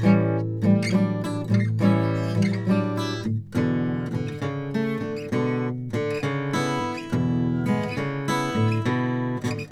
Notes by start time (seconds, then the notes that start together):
0.00 A2 E3
0.06 G3 C#4
0.63 A2 E3 G3
0.94 F#3 G3 D4
1.25 D4 E4
1.49 A2
1.54 G3
1.80 E3 G3
1.84 C#4 E4
2.25 E3
2.39 G3
2.68 F#3 G3 D4
2.98 D4 E4
3.25 A2 D3
3.53 E2 B2 D3
4.13 E2 B2 D3
4.43 C#3 D3
4.75 A3
5.04 D3
5.33 B2 D3 G#3
5.96 D3
6.24 C#3 D3
6.54 B3 E4
6.84 D3
7.13 E2 B2 D3
7.67 G#3 B3
7.98 C#3 D3
8.29 B3 E4
8.56 A2 D3
8.87 B2 D3
9.43 B2 D3